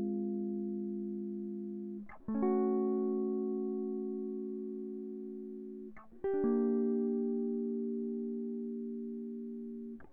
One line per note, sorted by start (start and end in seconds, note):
2.29 5.95 A3
2.35 5.90 C#4
2.43 5.92 F#4
6.24 9.97 G4
6.34 10.00 D4
6.44 10.00 A#3